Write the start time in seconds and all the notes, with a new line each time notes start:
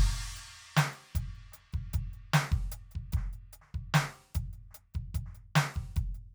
0.32 hi-hat pedal
0.37 closed hi-hat
0.77 closed hi-hat, snare
0.94 closed hi-hat
1.16 closed hi-hat, kick
1.35 closed hi-hat
1.53 closed hi-hat, snare
1.73 kick, closed hi-hat
1.94 closed hi-hat, kick
2.14 closed hi-hat
2.34 closed hi-hat, snare
2.52 kick, closed hi-hat
2.72 closed hi-hat
2.92 closed hi-hat
2.96 kick
3.13 closed hi-hat, kick
3.17 snare
3.34 closed hi-hat
3.53 closed hi-hat
3.62 snare
3.68 snare
3.75 kick, closed hi-hat
3.95 closed hi-hat, snare
4.15 closed hi-hat
4.35 closed hi-hat, kick
4.54 closed hi-hat
4.71 closed hi-hat, snare
4.95 kick, closed hi-hat
5.15 closed hi-hat, kick
5.27 snare
5.30 snare
5.35 closed hi-hat
5.56 closed hi-hat, snare
5.75 kick, closed hi-hat
5.97 closed hi-hat, kick
6.15 closed hi-hat